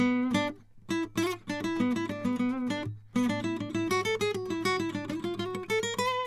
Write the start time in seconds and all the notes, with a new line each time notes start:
0.01 B3
0.35 D4
0.91 E4
1.18 F4
1.50 D4
1.65 E4
1.81 B3
1.97 E4
2.10 D4
2.25 B3
2.41 B3
2.71 D4
3.16 B3
3.30 D4
3.45 E4
3.62 D4
3.75 E4
3.92 F#4
4.06 A4
4.22 G#4
4.36 F#4
4.51 E4
4.66 F#4
4.81 E4
4.96 D4
5.10 D#4
5.25 F4
5.40 F#4
5.71 A4
5.84 A#4
5.99 C5